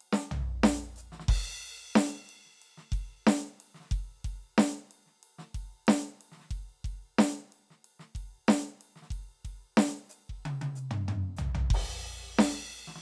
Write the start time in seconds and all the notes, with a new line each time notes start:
0.01 ride
0.13 snare
0.32 floor tom
0.64 snare, ride
0.96 hi-hat pedal, ride bell
1.12 snare
1.20 snare
1.29 kick, crash
1.62 ride
1.96 snare, ride
2.12 snare
2.29 ride
2.46 snare
2.62 ride
2.78 snare
2.92 kick, ride
3.27 snare, ride
3.60 ride
3.75 snare
3.80 snare
3.85 snare
3.91 kick, ride
4.25 kick, ride
4.58 snare, ride
4.71 snare
4.78 snare
4.91 ride
5.07 snare
5.23 ride
5.39 snare
5.55 kick, ride
5.87 snare, ride
6.21 ride
6.32 snare
6.37 snare
6.40 snare
6.44 snare
6.48 kick, snare, ride
6.85 kick, ride
7.19 snare, ride
7.39 snare
7.53 ride
7.71 snare
7.85 ride
8.00 snare
8.15 kick, ride
8.38 kick
8.48 snare, ride
8.81 ride
8.96 snare
9.02 snare
9.11 kick, ride
9.45 kick, ride
9.77 snare, ride
9.87 snare
10.10 hi-hat pedal, ride
10.30 kick
10.46 high tom
10.62 high tom
10.76 hi-hat pedal
10.91 mid tom
11.08 mid tom
11.37 floor tom, hi-hat pedal
11.55 floor tom
11.71 kick, crash
12.05 kick, ride
12.38 snare, crash
12.47 cross-stick
12.54 cross-stick
12.60 snare
12.73 ride
12.88 snare
12.96 snare